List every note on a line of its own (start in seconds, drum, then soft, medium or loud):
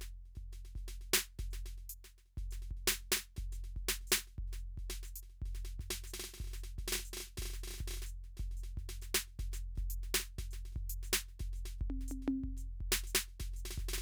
0.01 snare soft
0.26 snare soft
0.36 kick soft
0.36 snare soft
0.53 snare soft
0.53 hi-hat pedal soft
0.65 snare soft
0.76 kick soft
0.76 snare soft
0.78 snare soft
0.88 snare soft
1.01 snare soft
1.14 snare loud
1.18 snare medium
1.39 kick soft
1.39 snare soft
1.51 snare soft
1.51 hi-hat pedal soft
1.66 snare soft
1.78 snare soft
1.90 closed hi-hat medium
2.05 snare soft
2.18 snare soft
2.26 snare soft
2.38 kick soft
2.38 snare soft
2.51 snare soft
2.51 hi-hat pedal medium
2.71 kick soft
2.77 snare soft
2.88 snare loud
2.92 snare soft
3.01 snare soft
3.12 snare loud
3.17 snare soft
3.37 kick soft
3.37 snare soft
3.53 snare soft
3.53 hi-hat pedal medium
3.64 snare soft
3.77 kick soft
3.77 snare soft
3.89 snare medium
4.01 snare soft
4.08 hi-hat pedal medium
4.12 snare loud
4.18 snare soft
4.28 snare soft
4.39 kick soft
4.48 snare soft
4.53 snare soft
4.53 open hi-hat soft
4.57 hi-hat pedal soft
4.78 kick soft
4.78 snare soft
4.90 snare medium
5.03 snare soft
5.03 hi-hat pedal medium
5.16 closed hi-hat medium
5.23 snare soft
5.30 snare soft
5.42 kick soft
5.42 snare soft
5.53 snare soft
5.55 snare soft
5.55 hi-hat pedal soft
5.65 snare soft
5.80 kick soft
5.80 snare soft
5.91 snare medium
6.02 snare soft
6.04 snare soft
6.04 hi-hat pedal medium
6.14 snare medium
6.20 snare medium
6.24 snare soft
6.29 snare soft
6.34 snare soft
6.38 kick soft
6.38 snare soft
6.41 snare soft
6.44 snare soft
6.48 snare soft
6.54 snare soft
6.54 hi-hat pedal soft
6.54 open hi-hat soft
6.64 snare soft
6.79 kick soft
6.79 snare soft
6.88 snare medium
6.93 snare medium
6.96 snare medium
7.00 snare soft
7.05 hi-hat pedal medium
7.14 snare medium
7.17 snare medium
7.21 snare soft
7.38 kick soft
7.38 snare soft
7.42 snare soft
7.46 snare soft
7.50 snare soft
7.54 snare soft
7.54 hi-hat pedal soft
7.64 snare soft
7.68 snare soft
7.71 snare soft
7.74 snare soft
7.78 kick soft
7.78 snare soft
7.88 snare soft
7.91 snare soft
7.94 snare soft
7.97 snare soft
8.02 snare soft
8.07 hi-hat pedal medium
8.24 snare soft
8.37 kick soft
8.37 snare soft
8.40 snare soft
8.51 snare soft
8.51 crash soft
8.57 hi-hat pedal soft
8.64 snare soft
8.78 kick soft
8.78 snare soft
8.89 snare soft
8.98 snare soft
9.02 snare soft
9.02 hi-hat pedal soft
9.15 snare loud
9.28 snare soft
9.39 kick soft
9.39 snare soft
9.52 snare soft
9.54 snare soft
9.54 hi-hat pedal medium
9.76 snare soft
9.78 kick soft
9.78 snare soft
9.90 closed hi-hat medium
10.04 snare soft
10.15 snare loud
10.20 snare soft
10.39 kick soft
10.39 snare soft
10.51 snare soft
10.51 hi-hat pedal soft
10.66 snare soft
10.73 kick soft
10.73 snare soft
10.77 snare soft
10.90 closed hi-hat loud
11.03 snare soft
11.03 hi-hat pedal medium
11.13 snare loud
11.29 snare soft
11.40 kick soft
11.40 snare soft
11.53 snare soft
11.53 hi-hat pedal soft
11.66 snare soft
11.79 kick soft
11.79 snare soft
11.90 high tom medium
12.01 snare soft
12.08 hi-hat pedal medium
12.08 high tom medium
12.13 closed hi-hat soft
12.22 snare soft
12.28 high tom loud
12.44 kick soft
12.57 snare soft
12.57 hi-hat pedal medium
12.81 kick soft
12.92 snare loud
13.04 snare soft
13.04 hi-hat pedal medium
13.15 snare loud
13.28 snare soft
13.40 kick soft
13.40 snare soft
13.52 snare soft
13.54 snare soft
13.54 hi-hat pedal medium
13.54 open hi-hat soft
13.66 snare soft
13.71 snare medium
13.78 kick soft
13.78 snare soft
13.89 snare medium
13.94 snare medium
13.98 snare soft